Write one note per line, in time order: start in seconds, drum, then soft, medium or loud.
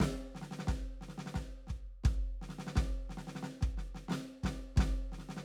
0.03 snare loud
0.35 snare soft
0.41 snare soft
0.51 snare soft
0.59 snare soft
0.67 kick medium
0.67 snare medium
1.01 snare soft
1.08 snare soft
1.18 snare soft
1.26 snare soft
1.34 kick soft
1.34 snare medium
1.67 kick soft
1.67 snare soft
2.04 kick loud
2.04 snare soft
2.42 snare soft
2.49 snare soft
2.59 snare soft
2.67 snare soft
2.76 kick medium
2.76 snare medium
3.09 snare soft
3.17 snare soft
3.27 snare soft
3.35 snare soft
3.43 snare medium
3.61 kick medium
3.61 snare soft
3.77 snare soft
3.95 snare soft
4.08 snare soft
4.11 snare medium
4.43 kick medium
4.43 snare soft
4.45 snare medium
4.76 kick loud
4.76 snare soft
4.79 snare medium
5.12 snare soft
5.18 snare soft
5.29 snare soft
5.37 snare soft